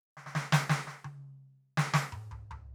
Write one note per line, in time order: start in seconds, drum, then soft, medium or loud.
0.17 snare soft
0.26 snare soft
0.35 snare medium
0.52 snare loud
0.70 snare loud
0.87 snare soft
1.05 high tom medium
1.77 snare loud
1.94 snare loud
2.12 mid tom medium
2.31 floor tom medium
2.51 floor tom medium